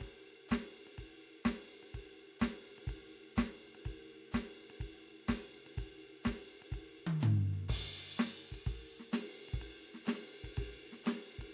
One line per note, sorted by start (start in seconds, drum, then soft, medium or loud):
0.01 kick soft
0.01 ride medium
0.49 kick soft
0.49 snare medium
0.49 hi-hat pedal loud
0.49 ride loud
0.87 ride medium
0.98 kick soft
0.98 ride medium
1.45 kick soft
1.45 snare loud
1.45 hi-hat pedal loud
1.45 ride loud
1.83 ride medium
1.92 kick soft
1.92 hi-hat pedal soft
1.92 ride medium
2.40 kick soft
2.40 snare medium
2.40 hi-hat pedal loud
2.40 ride loud
2.78 ride medium
2.87 kick soft
2.87 hi-hat pedal soft
2.87 ride medium
3.36 kick soft
3.36 snare loud
3.36 hi-hat pedal loud
3.36 ride loud
3.75 ride medium
3.81 hi-hat pedal soft
3.85 kick soft
3.85 ride medium
4.32 kick soft
4.32 snare medium
4.32 hi-hat pedal medium
4.32 ride loud
4.70 ride medium
4.80 kick soft
4.80 ride medium
5.27 kick soft
5.27 snare medium
5.27 hi-hat pedal medium
5.27 ride loud
5.67 ride medium
5.78 kick soft
5.78 ride medium
6.24 kick soft
6.24 snare medium
6.24 hi-hat pedal medium
6.24 ride loud
6.62 ride medium
6.72 kick soft
6.72 ride medium
7.07 high tom loud
7.20 floor tom loud
7.20 hi-hat pedal loud
7.53 snare soft
7.58 snare soft
7.62 snare soft
7.69 kick medium
7.69 ride loud
8.18 snare medium
8.18 hi-hat pedal loud
8.18 ride medium
8.52 kick soft
8.52 ride medium
8.66 kick soft
8.66 ride medium
9.00 snare soft
9.12 snare medium
9.12 hi-hat pedal medium
9.12 ride loud
9.49 ride medium
9.54 kick soft
9.62 ride medium
9.94 snare soft
10.05 snare medium
10.05 hi-hat pedal loud
10.05 ride loud
10.13 snare soft
10.44 kick soft
10.44 ride medium
10.54 kick soft
10.54 hi-hat pedal soft
10.54 ride loud
10.92 snare soft
11.04 snare medium
11.04 hi-hat pedal loud
11.04 ride loud
11.13 snare soft
11.39 kick soft
11.39 ride medium